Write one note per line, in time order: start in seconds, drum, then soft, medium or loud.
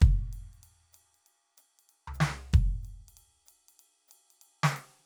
0.01 kick loud
0.01 ride soft
0.09 hi-hat pedal soft
0.33 ride soft
0.53 ride soft
0.93 hi-hat pedal soft
0.93 ride soft
1.15 ride soft
1.27 ride soft
1.58 hi-hat pedal medium
1.58 ride soft
1.79 ride soft
1.89 ride soft
2.08 floor tom medium
2.14 hi-hat pedal medium
2.21 snare loud
2.53 kick loud
2.53 ride soft
2.83 hi-hat pedal soft
2.83 ride soft
3.09 ride soft
3.17 ride soft
3.46 hi-hat pedal soft
3.46 ride soft
3.69 ride soft
3.80 ride soft
4.08 hi-hat pedal soft
4.08 ride soft
4.31 ride soft
4.42 ride soft
4.64 snare loud
4.64 hi-hat pedal soft
4.77 ride medium